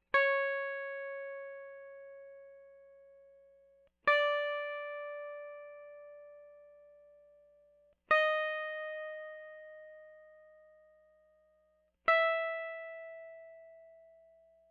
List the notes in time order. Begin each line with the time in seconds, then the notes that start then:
0.14 C#5
4.08 D5
8.11 D#5
12.08 E5